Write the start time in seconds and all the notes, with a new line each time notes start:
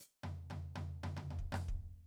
0.00 hi-hat pedal
0.23 floor tom, high tom
0.50 floor tom, high tom
0.75 floor tom, high tom
1.03 floor tom, high tom
1.16 floor tom, high tom
1.30 floor tom
1.38 kick
1.52 cross-stick, floor tom
1.68 kick